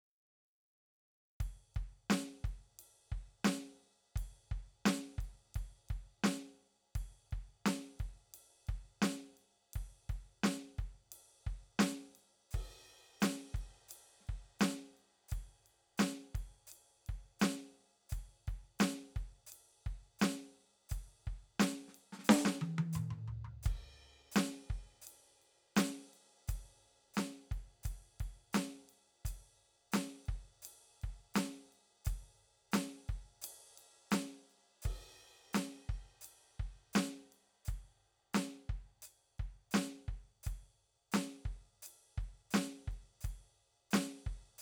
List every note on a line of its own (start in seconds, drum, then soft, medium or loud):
1.40 kick soft
1.40 ride soft
1.75 kick soft
1.75 ride soft
2.10 snare loud
2.10 ride medium
2.44 kick soft
2.44 ride soft
2.79 ride medium
3.12 kick soft
3.12 ride soft
3.44 snare loud
3.44 ride medium
4.16 kick soft
4.16 ride soft
4.51 kick soft
4.85 snare loud
4.85 ride medium
5.18 kick soft
5.18 ride soft
5.55 kick soft
5.55 ride soft
5.89 kick soft
5.89 ride soft
6.24 snare loud
6.24 ride soft
6.95 kick soft
6.95 ride soft
7.31 kick soft
7.31 ride soft
7.66 snare loud
7.66 ride medium
7.99 kick soft
7.99 ride soft
8.34 ride medium
8.67 kick soft
8.67 ride soft
9.02 snare loud
9.02 ride soft
9.37 ride soft
9.73 kick soft
9.73 ride medium
10.09 kick soft
10.09 ride soft
10.43 snare loud
10.43 ride soft
10.78 kick soft
10.78 ride soft
11.12 ride medium
11.47 kick soft
11.47 ride soft
11.79 snare loud
11.79 ride medium
12.15 ride soft
12.51 kick soft
12.51 hi-hat pedal soft
12.51 crash soft
12.85 ride soft
13.20 snare loud
13.20 hi-hat pedal soft
13.20 ride medium
13.54 kick soft
13.54 ride soft
13.88 hi-hat pedal soft
13.88 ride medium
14.20 snare soft
14.27 kick soft
14.27 ride soft
14.59 snare loud
14.59 hi-hat pedal soft
14.59 ride soft
14.67 snare soft
14.97 ride soft
15.28 kick soft
15.28 hi-hat pedal soft
15.28 ride soft
15.66 ride soft
15.98 snare loud
15.98 hi-hat pedal medium
15.98 ride soft
16.35 kick soft
16.35 ride soft
16.67 hi-hat pedal medium
16.72 ride soft
17.06 kick soft
17.06 ride soft
17.39 snare loud
17.39 hi-hat pedal medium
17.39 ride medium
18.09 kick soft
18.09 hi-hat pedal medium
18.09 ride soft
18.47 kick soft
18.47 ride soft
18.79 snare loud
18.79 hi-hat pedal medium
18.79 ride medium
19.16 kick soft
19.16 ride soft
19.47 hi-hat pedal medium
19.52 ride medium
19.86 kick soft
19.86 ride soft
20.19 snare loud
20.19 hi-hat pedal soft
20.19 ride medium
20.89 kick soft
20.89 hi-hat pedal medium
20.89 ride medium
21.26 kick soft
21.26 ride soft
21.59 snare loud
21.59 hi-hat pedal medium
21.59 ride medium
21.88 snare soft
21.94 ride soft
22.12 snare soft
22.19 snare soft
22.24 snare soft
22.24 hi-hat pedal medium
22.29 snare loud
22.45 snare medium
22.61 high tom medium
22.78 high tom loud
22.93 hi-hat pedal medium
22.93 mid tom medium
23.10 mid tom medium
23.28 floor tom soft
23.44 floor tom soft
23.63 kick medium
23.63 hi-hat pedal medium
23.63 ride soft
24.32 hi-hat pedal medium
24.36 snare loud
24.36 ride medium
24.70 kick soft
24.70 ride soft
25.02 hi-hat pedal medium
25.07 ride medium
25.42 ride soft
25.76 snare loud
25.76 hi-hat pedal medium
25.76 ride medium
26.13 ride soft
26.48 kick soft
26.48 hi-hat pedal soft
26.48 ride medium
26.82 ride soft
27.14 snare medium
27.14 hi-hat pedal soft
27.18 ride soft
27.51 kick soft
27.51 ride soft
27.83 kick soft
27.83 hi-hat pedal medium
27.83 ride medium
28.20 kick soft
28.20 ride soft
28.53 snare medium
28.53 hi-hat pedal medium
28.53 ride medium
28.89 ride soft
29.25 kick soft
29.25 hi-hat pedal medium
29.25 ride medium
29.92 snare medium
29.92 hi-hat pedal medium
29.92 ride medium
30.26 kick soft
30.26 ride soft
30.62 hi-hat pedal medium
30.62 ride medium
31.02 kick soft
31.02 ride soft
31.34 snare medium
31.34 hi-hat pedal medium
31.34 ride medium
31.44 snare soft
31.72 ride soft
32.05 kick medium
32.05 hi-hat pedal medium
32.05 ride medium
32.38 ride soft
32.72 snare loud
32.72 hi-hat pedal medium
32.72 ride medium
33.08 kick soft
33.08 ride soft
33.42 hi-hat pedal medium
33.42 ride medium
33.78 ride soft
34.11 snare loud
34.11 hi-hat pedal medium
34.11 ride medium
34.50 ride soft
34.82 kick medium
34.82 hi-hat pedal medium
34.82 crash soft
35.53 snare medium
35.53 hi-hat pedal medium
35.53 ride medium
35.89 kick soft
36.21 hi-hat pedal medium
36.21 ride medium
36.59 kick soft
36.93 snare loud
36.93 hi-hat pedal medium
36.93 ride soft
37.32 ride soft
37.65 kick soft
37.65 hi-hat pedal medium
37.65 ride soft
38.34 snare medium
38.34 hi-hat pedal medium
38.34 ride soft
38.69 kick soft
39.02 hi-hat pedal medium
39.02 ride soft
39.39 kick soft
39.39 ride soft
39.71 snare loud
39.71 hi-hat pedal medium
39.71 ride soft
40.08 kick soft
40.43 kick soft
40.43 hi-hat pedal medium
40.43 ride soft
41.12 snare medium
41.12 hi-hat pedal medium
41.12 ride medium
41.45 kick soft
41.82 hi-hat pedal medium
41.86 ride medium
42.18 kick soft
42.18 ride soft
42.51 snare loud
42.51 hi-hat pedal medium
42.51 ride medium
42.87 kick soft
42.87 ride soft
43.21 kick soft
43.21 hi-hat pedal medium
43.25 ride soft
43.91 snare loud
43.91 hi-hat pedal medium
43.91 ride medium
44.26 kick soft
44.58 hi-hat pedal medium